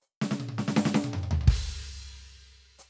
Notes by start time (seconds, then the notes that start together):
0.02 hi-hat pedal
0.22 snare
0.31 snare
0.40 high tom
0.49 high tom
0.58 snare
0.68 snare
0.76 snare
0.85 snare
0.94 snare
1.04 high tom
1.13 mid tom
1.23 high tom
1.31 floor tom
1.41 floor tom
1.44 kick, floor tom
1.50 crash
2.79 hi-hat pedal